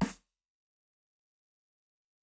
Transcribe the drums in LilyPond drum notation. \new DrumStaff \drummode { \time 4/4 \tempo 4 = 108 <sn hh>4 r4 r4 r4 | }